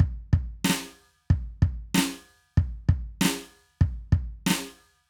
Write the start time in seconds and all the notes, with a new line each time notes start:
0.00 kick
0.33 kick
0.65 snare
0.70 snare
1.30 kick
1.62 kick
1.95 snare
1.98 snare
2.57 kick
2.89 kick
3.21 snare
3.25 snare
3.81 kick
4.12 kick
4.47 snare
4.50 snare